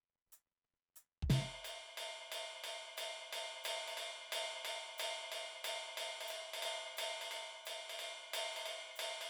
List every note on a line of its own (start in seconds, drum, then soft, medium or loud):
0.32 hi-hat pedal medium
0.96 hi-hat pedal medium
1.22 kick soft
1.30 snare medium
1.30 ride medium
1.64 hi-hat pedal medium
1.64 ride medium
1.97 ride medium
2.32 hi-hat pedal medium
2.32 ride medium
2.64 ride medium
2.97 hi-hat pedal medium
2.97 ride medium
3.33 ride medium
3.64 hi-hat pedal medium
3.64 ride loud
3.87 ride medium
3.97 ride medium
4.32 hi-hat pedal medium
4.32 ride loud
4.65 ride medium
4.98 hi-hat pedal medium
4.98 ride loud
5.32 ride medium
5.64 hi-hat pedal medium
5.64 ride loud
5.97 ride medium
6.20 ride medium
6.27 hi-hat pedal medium
6.27 ride medium
6.53 ride medium
6.62 ride medium
6.97 hi-hat pedal medium
6.97 ride loud
7.21 ride medium
7.31 ride medium
7.65 hi-hat pedal medium
7.65 ride medium
7.89 ride medium
7.99 ride medium
8.33 hi-hat pedal medium
8.33 ride loud
8.53 hi-hat pedal soft
8.53 ride medium
8.65 ride medium
8.95 hi-hat pedal medium
8.95 ride loud
9.21 ride medium